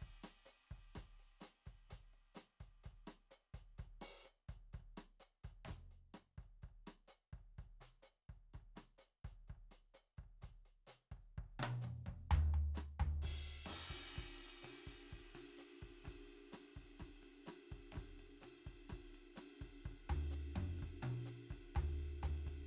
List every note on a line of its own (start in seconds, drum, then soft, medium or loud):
0.01 kick soft
0.01 closed hi-hat soft
0.07 kick soft
0.24 closed hi-hat medium
0.24 cross-stick soft
0.46 closed hi-hat soft
0.46 hi-hat pedal medium
0.71 kick soft
0.71 closed hi-hat soft
0.77 kick soft
0.96 closed hi-hat medium
0.96 kick soft
0.96 cross-stick soft
1.03 kick soft
1.19 closed hi-hat soft
1.41 closed hi-hat medium
1.41 cross-stick soft
1.41 hi-hat pedal medium
1.66 closed hi-hat soft
1.66 kick soft
1.90 closed hi-hat medium
1.90 kick soft
1.90 snare soft
2.14 closed hi-hat soft
2.35 closed hi-hat medium
2.35 cross-stick soft
2.35 snare soft
2.35 hi-hat pedal medium
2.60 closed hi-hat soft
2.60 kick soft
2.84 closed hi-hat soft
2.84 kick soft
2.91 kick soft
3.07 closed hi-hat medium
3.07 cross-stick soft
3.31 hi-hat pedal medium
3.54 closed hi-hat soft
3.54 kick soft
3.60 kick soft
3.79 closed hi-hat soft
3.79 kick soft
3.85 kick soft
4.01 open hi-hat medium
4.01 cross-stick soft
4.01 snare soft
4.25 hi-hat pedal medium
4.49 closed hi-hat soft
4.49 kick soft
4.54 kick soft
4.73 closed hi-hat soft
4.73 kick soft
4.80 kick soft
4.97 closed hi-hat medium
4.97 cross-stick soft
5.20 hi-hat pedal medium
5.44 closed hi-hat soft
5.44 kick soft
5.50 kick soft
5.65 closed hi-hat medium
5.65 cross-stick soft
5.65 snare soft
5.65 hi-hat pedal soft
5.65 mid tom soft
5.71 kick soft
5.76 kick soft
5.91 closed hi-hat soft
6.14 cross-stick soft
6.14 hi-hat pedal medium
6.38 closed hi-hat soft
6.38 kick soft
6.43 kick soft
6.63 closed hi-hat soft
6.63 kick soft
6.69 kick soft
6.87 closed hi-hat soft
6.87 cross-stick soft
7.08 closed hi-hat soft
7.08 hi-hat pedal medium
7.33 closed hi-hat soft
7.33 kick soft
7.38 kick soft
7.59 closed hi-hat soft
7.59 kick soft
7.64 kick soft
7.81 closed hi-hat soft
7.81 snare soft
8.03 closed hi-hat soft
8.03 hi-hat pedal medium
8.30 closed hi-hat soft
8.30 kick soft
8.54 closed hi-hat soft
8.54 kick soft
8.54 cross-stick soft
8.60 kick soft
8.76 closed hi-hat soft
8.76 cross-stick soft
8.76 snare soft
8.99 closed hi-hat soft
8.99 hi-hat pedal medium
9.25 closed hi-hat soft
9.25 kick soft
9.25 snare soft
9.30 kick soft
9.48 closed hi-hat soft
9.48 kick soft
9.55 kick soft
9.72 closed hi-hat soft
9.72 cross-stick soft
9.94 hi-hat pedal medium
10.18 closed hi-hat soft
10.18 kick soft
10.24 kick soft
10.42 closed hi-hat soft
10.42 kick soft
10.42 snare soft
10.49 kick soft
10.66 closed hi-hat soft
10.87 closed hi-hat medium
10.87 snare soft
10.87 hi-hat pedal medium
11.12 kick soft
11.12 closed hi-hat soft
11.17 kick soft
11.38 kick soft
11.44 kick soft
11.60 high tom medium
11.63 high tom loud
11.82 hi-hat pedal medium
11.82 mid tom soft
12.07 kick soft
12.07 mid tom soft
12.14 kick soft
12.31 kick soft
12.31 floor tom loud
12.39 kick soft
12.54 floor tom medium
12.75 cross-stick medium
12.75 snare soft
12.75 hi-hat pedal medium
13.00 kick soft
13.00 floor tom medium
13.07 kick soft
13.22 kick soft
13.22 hi-hat pedal soft
13.22 ride medium
13.31 kick soft
13.66 cross-stick soft
13.66 hi-hat pedal medium
13.66 mid tom soft
13.66 crash medium
13.70 cross-stick soft
13.91 kick soft
13.91 ride medium
13.96 kick soft
14.16 kick soft
14.16 hi-hat pedal soft
14.16 ride medium
14.24 kick soft
14.41 ride soft
14.63 snare soft
14.63 hi-hat pedal medium
14.63 ride medium
14.87 kick soft
14.87 ride soft
15.10 kick soft
15.10 hi-hat pedal soft
15.10 ride soft
15.18 kick soft
15.35 snare soft
15.35 ride medium
15.59 hi-hat pedal medium
15.59 ride soft
15.82 kick soft
15.82 ride soft
15.88 kick soft
16.05 kick soft
16.05 snare soft
16.05 ride medium
16.13 kick soft
16.29 ride soft
16.53 cross-stick soft
16.53 hi-hat pedal medium
16.53 ride medium
16.77 kick soft
16.77 ride soft
16.82 kick soft
17.00 kick soft
17.00 cross-stick soft
17.00 ride medium
17.07 kick soft
17.23 ride soft
17.47 cross-stick soft
17.47 snare soft
17.47 hi-hat pedal medium
17.47 ride medium
17.72 kick soft
17.72 ride soft
17.77 kick soft
17.93 cross-stick soft
17.93 snare soft
17.93 hi-hat pedal soft
17.93 mid tom soft
17.93 ride medium
17.98 kick soft
18.03 kick soft
18.20 ride soft
18.42 snare soft
18.42 hi-hat pedal medium
18.42 crash soft
18.42 ride medium
18.67 kick soft
18.67 ride soft
18.72 kick soft
18.90 kick soft
18.90 cross-stick soft
18.90 ride medium
18.98 kick soft
19.15 ride soft
19.36 cross-stick soft
19.36 hi-hat pedal medium
19.36 ride medium
19.62 kick soft
19.62 ride soft
19.67 kick soft
19.83 kick soft
19.83 hi-hat pedal soft
19.83 ride soft
19.92 kick soft
20.10 floor tom medium
20.10 ride medium
20.31 hi-hat pedal medium
20.56 kick soft
20.56 mid tom medium
20.56 ride medium
20.63 kick soft
20.79 hi-hat pedal soft
20.79 ride soft
20.83 kick soft
20.88 kick soft
21.03 high tom medium
21.03 ride medium
21.26 hi-hat pedal medium
21.26 ride soft
21.51 kick soft
21.51 ride soft
21.56 kick soft
21.75 kick soft
21.75 floor tom medium
21.75 hi-hat pedal soft
21.75 ride medium
21.83 kick soft
22.01 ride soft
22.23 floor tom medium
22.23 hi-hat pedal loud
22.23 ride medium
22.47 kick soft
22.47 ride soft
22.52 kick soft